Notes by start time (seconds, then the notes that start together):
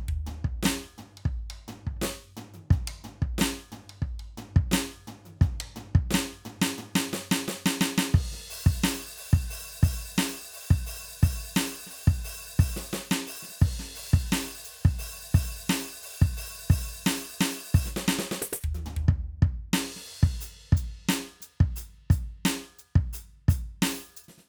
0.09 mid tom
0.27 floor tom
0.45 kick
0.63 snare
0.66 snare
0.98 floor tom
1.18 high tom
1.26 kick
1.51 high tom
1.68 floor tom
1.87 kick
1.97 kick
2.02 snare
2.04 snare
2.37 floor tom
2.54 high tom
2.71 kick, floor tom
2.88 high tom
3.05 floor tom
3.22 kick
3.39 snare
3.42 snare
3.72 floor tom
3.90 high tom
4.02 kick
4.20 high tom
4.38 floor tom
4.57 kick
4.72 snare
4.74 snare
5.08 floor tom
5.26 high tom
5.42 kick, floor tom
5.61 mid tom
5.76 floor tom
5.95 kick
6.11 snare
6.15 snare
6.46 floor tom
6.62 snare
6.78 floor tom
6.96 snare
7.13 snare
7.32 snare
7.48 snare
7.66 snare
7.81 snare
7.98 snare
8.14 kick, crash
8.33 snare
8.39 snare
8.50 open hi-hat
8.67 kick
8.84 open hi-hat, snare
9.17 open hi-hat
9.33 kick
9.50 open hi-hat
9.83 open hi-hat, kick
10.18 open hi-hat, snare
10.53 open hi-hat
10.71 kick
10.86 open hi-hat
11.22 open hi-hat, kick
11.57 open hi-hat, snare
11.87 open hi-hat, snare
12.08 kick
12.24 open hi-hat
12.59 open hi-hat, kick
12.77 snare
12.93 snare
13.12 snare
13.27 open hi-hat
13.43 snare
13.49 snare
13.62 kick, crash
13.80 snare
13.95 open hi-hat
14.14 kick
14.33 open hi-hat, snare
14.41 snare
14.65 open hi-hat
14.85 kick
14.99 open hi-hat
15.34 open hi-hat, kick
15.70 open hi-hat, snare
16.03 open hi-hat
16.22 kick
16.37 open hi-hat
16.70 open hi-hat, kick
17.07 open hi-hat, snare
17.41 open hi-hat, snare
17.74 open hi-hat, kick
17.86 snare, hi-hat pedal
17.97 snare
18.08 snare
18.13 hi-hat pedal
18.19 snare
18.32 snare, hi-hat pedal
18.42 high tom
18.53 high tom
18.64 mid tom
18.75 high tom
18.86 floor tom
18.97 mid tom
19.09 kick
19.43 kick
19.74 snare, crash
19.97 snare
20.04 open hi-hat
20.23 kick
20.41 closed hi-hat
20.73 kick
20.77 closed hi-hat
21.09 closed hi-hat, snare
21.41 snare, closed hi-hat
21.61 kick
21.76 closed hi-hat
22.11 closed hi-hat, kick
22.46 closed hi-hat, snare
22.79 closed hi-hat
22.96 kick
23.13 closed hi-hat
23.49 closed hi-hat, kick
23.83 open hi-hat, snare
24.17 hi-hat pedal, open hi-hat
24.24 closed hi-hat
24.29 snare
24.38 snare